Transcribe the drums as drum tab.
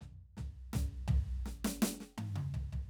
PC |-------------x--|
SD |g-o-o---oooo----|
T1 |-------------o--|
T2 |------------o---|
FT |g-o-o-o-------oo|